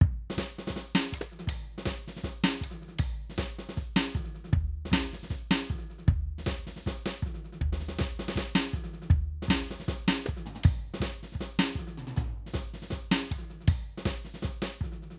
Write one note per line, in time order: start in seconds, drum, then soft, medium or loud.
0.02 kick loud
0.30 snare loud
0.37 kick soft
0.37 snare loud
0.58 snare medium
0.67 kick soft
0.67 snare loud
0.76 snare medium
0.95 snare loud
1.12 kick soft
1.12 high tom loud
1.21 high tom loud
1.32 high tom medium
1.39 high tom loud
1.47 kick medium
1.47 mid tom loud
1.78 snare medium
1.86 kick medium
1.86 snare loud
2.08 snare medium
2.17 snare medium
2.24 kick medium
2.24 snare medium
2.44 snare loud
2.61 kick medium
2.61 high tom medium
2.71 high tom loud
2.82 high tom medium
2.88 high tom medium
2.99 kick medium
2.99 mid tom loud
3.30 snare medium
3.38 kick medium
3.38 snare loud
3.58 snare medium
3.69 snare medium
3.77 kick medium
3.77 snare medium
3.96 snare loud
4.15 kick medium
4.15 high tom loud
4.24 high tom medium
4.35 high tom medium
4.44 high tom medium
4.53 kick loud
4.53 mid tom loud
4.85 snare medium
4.92 kick medium
4.92 snare loud
5.13 snare medium
5.23 snare medium
5.30 kick medium
5.30 snare medium
5.51 snare loud
5.70 kick medium
5.70 high tom medium
5.78 high tom medium
5.88 snare soft
5.88 high tom medium
5.98 high tom medium
6.08 kick loud
6.08 mid tom loud
6.38 snare medium
6.46 kick medium
6.46 snare loud
6.67 snare medium
6.76 snare medium
6.86 kick medium
6.86 snare loud
7.06 snare loud
7.22 kick medium
7.22 high tom medium
7.34 high tom medium
7.44 high tom medium
7.53 high tom medium
7.61 kick medium
7.61 mid tom loud
7.72 snare medium
7.80 snare medium
7.88 snare medium
7.99 kick medium
7.99 snare loud
8.19 snare loud
8.28 snare loud
8.36 kick medium
8.36 snare loud
8.55 snare loud
8.73 kick medium
8.73 high tom loud
8.84 high tom loud
8.93 high tom medium
9.02 high tom loud
9.10 kick loud
9.10 mid tom loud
9.42 snare medium
9.48 kick medium
9.48 snare loud
9.71 snare medium
9.80 snare medium
9.88 kick medium
9.88 snare loud
10.08 snare loud
10.26 kick medium
10.26 high tom loud
10.37 high tom loud
10.46 floor tom loud
10.55 floor tom loud
10.64 kick loud
10.64 mid tom loud
10.94 snare medium
11.00 kick medium
11.00 snare loud
11.23 snare medium
11.32 kick medium
11.32 snare soft
11.41 snare loud
11.59 snare loud
11.75 kick medium
11.75 high tom loud
11.87 high tom loud
11.97 mid tom medium
12.07 mid tom medium
12.16 kick medium
12.16 floor tom loud
12.46 snare medium
12.54 kick medium
12.54 snare loud
12.74 snare medium
12.82 snare medium
12.90 kick medium
12.90 snare loud
13.11 snare loud
13.31 kick medium
13.31 high tom medium
13.38 high tom medium
13.50 high tom medium
13.61 high tom medium
13.68 kick loud
13.68 mid tom loud
13.98 snare medium
14.05 kick medium
14.05 snare loud
14.25 snare medium
14.34 snare medium
14.42 kick medium
14.42 snare loud
14.62 snare loud
14.81 kick medium
14.81 high tom medium
14.92 high tom medium
15.02 high tom medium
15.10 high tom medium